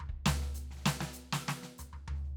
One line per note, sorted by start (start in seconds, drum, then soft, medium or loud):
0.00 floor tom medium
0.09 kick soft
0.26 snare loud
0.26 floor tom loud
0.41 snare soft
0.55 hi-hat pedal medium
0.71 snare soft
0.76 snare soft
0.81 snare soft
0.86 snare loud
1.01 snare medium
1.13 snare soft
1.13 hi-hat pedal medium
1.32 snare loud
1.48 snare medium
1.63 snare medium
1.78 floor tom medium
1.78 hi-hat pedal medium
1.93 floor tom medium
2.08 floor tom loud
2.15 snare soft
2.24 snare soft